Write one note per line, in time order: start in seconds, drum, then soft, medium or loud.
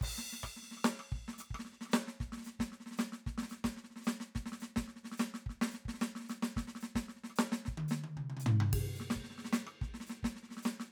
0.01 kick medium
0.01 crash medium
0.08 kick soft
0.18 snare soft
0.28 hi-hat pedal soft
0.32 snare soft
0.43 kick soft
0.43 cross-stick medium
0.56 snare soft
0.62 snare soft
0.67 snare soft
0.71 snare soft
0.77 cross-stick soft
0.80 cross-stick soft
0.84 snare loud
0.84 hi-hat pedal medium
0.99 cross-stick medium
1.12 kick soft
1.12 snare soft
1.18 kick soft
1.28 snare soft
1.33 cross-stick soft
1.38 cross-stick medium
1.38 snare soft
1.38 hi-hat pedal medium
1.51 kick soft
1.51 cross-stick medium
1.59 snare soft
1.65 snare soft
1.72 snare soft
1.81 snare soft
1.85 cross-stick soft
1.85 snare soft
1.92 snare loud
1.92 hi-hat pedal medium
2.07 snare soft
2.20 kick soft
2.20 snare soft
2.27 kick soft
2.32 snare soft
2.37 snare soft
2.40 snare soft
2.40 hi-hat pedal soft
2.46 snare soft
2.59 kick soft
2.59 snare medium
2.72 snare soft
2.80 snare soft
2.86 snare soft
2.91 snare soft
2.96 snare soft
2.96 hi-hat pedal medium
2.99 snare medium
3.12 snare soft
3.26 kick soft
3.26 snare soft
3.38 snare medium
3.42 snare medium
3.47 snare soft
3.47 hi-hat pedal soft
3.51 snare soft
3.64 kick soft
3.64 snare medium
3.77 snare soft
3.84 snare soft
3.90 snare soft
3.96 snare soft
4.04 snare medium
4.04 hi-hat pedal soft
4.20 snare soft
4.35 kick soft
4.35 snare soft
4.46 snare soft
4.52 snare soft
4.60 snare soft
4.60 hi-hat pedal soft
4.76 kick soft
4.76 snare medium
4.88 snare soft
4.96 snare soft
5.03 snare soft
5.12 snare soft
5.17 snare medium
5.17 hi-hat pedal medium
5.34 snare soft
5.46 kick soft
5.46 snare soft
5.61 snare medium
5.66 snare medium
5.71 snare soft
5.71 hi-hat pedal soft
5.85 kick soft
5.85 snare medium
5.94 snare soft
5.98 snare soft
6.01 snare medium
6.15 snare soft
6.20 snare soft
6.24 snare soft
6.29 hi-hat pedal soft
6.42 snare medium
6.56 kick soft
6.56 snare medium
6.63 kick soft
6.67 snare soft
6.75 snare soft
6.81 snare medium
6.81 hi-hat pedal soft
6.95 kick soft
6.95 snare medium
7.08 snare soft
7.16 snare soft
7.23 snare soft
7.30 cross-stick soft
7.36 snare loud
7.36 hi-hat pedal medium
7.52 snare medium
7.65 kick soft
7.65 snare soft
7.74 kick soft
7.74 high tom loud
7.88 snare medium
7.88 hi-hat pedal medium
8.04 high tom medium
8.16 kick soft
8.16 mid tom medium
8.30 mid tom medium
8.37 hi-hat pedal medium
8.37 mid tom medium
8.46 floor tom loud
8.60 mid tom loud
8.73 kick medium
8.73 ride loud
8.80 kick soft
8.86 kick soft
8.96 hi-hat pedal soft
9.00 snare soft
9.10 snare medium
9.16 kick soft
9.24 snare soft
9.30 snare soft
9.35 snare soft
9.38 snare soft
9.45 snare soft
9.53 snare loud
9.53 hi-hat pedal medium
9.67 cross-stick medium
9.81 kick soft
9.81 snare soft
9.89 kick soft
9.94 snare soft
10.00 snare soft
10.06 snare soft
10.06 hi-hat pedal soft
10.10 snare medium
10.23 kick soft
10.23 snare medium
10.36 snare soft
10.43 snare soft
10.49 snare soft
10.51 snare soft
10.57 snare soft
10.62 snare medium
10.62 hi-hat pedal medium
10.80 snare medium